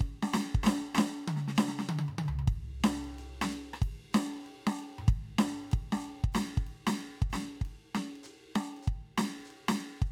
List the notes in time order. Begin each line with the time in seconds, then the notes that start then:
0.01 kick, ride
0.23 snare
0.28 hi-hat pedal
0.34 snare
0.55 kick
0.61 snare, hi-hat pedal
0.67 snare
0.95 snare
0.99 snare, hi-hat pedal
1.28 hi-hat pedal, high tom
1.37 snare
1.48 snare
1.55 snare, hi-hat pedal
1.69 snare
1.79 snare, hi-hat pedal
1.89 high tom
2.09 mid tom
2.19 high tom
2.28 floor tom
2.39 mid tom
2.48 kick, ride
2.80 hi-hat pedal
2.84 snare, ride
3.05 ride
3.19 hi-hat pedal, ride
3.42 snare
3.49 hi-hat pedal, ride
3.74 cross-stick
3.82 kick, ride
4.13 snare, hi-hat pedal, ride
4.34 ride
4.40 hi-hat pedal
4.47 ride
4.67 snare
4.72 hi-hat pedal
4.79 ride
4.99 mid tom
5.08 kick, ride
5.39 snare, ride
5.72 kick, ride
5.93 snare
5.99 hi-hat pedal
6.04 ride
6.24 kick
6.33 snare, hi-hat pedal, ride
6.58 kick, hi-hat pedal
6.67 ride
6.87 snare
7.01 ride
7.22 kick
7.30 kick, snare, hi-hat pedal, ride
7.62 kick, ride
7.95 snare, hi-hat pedal, ride
8.16 ride
8.24 hi-hat pedal, ride
8.56 snare, hi-hat pedal, ride
8.77 ride
8.83 hi-hat pedal
8.88 kick, ride
9.18 snare, hi-hat pedal, ride
9.41 ride
9.45 hi-hat pedal
9.51 ride
9.69 snare, hi-hat pedal
9.81 ride
10.02 kick, hi-hat pedal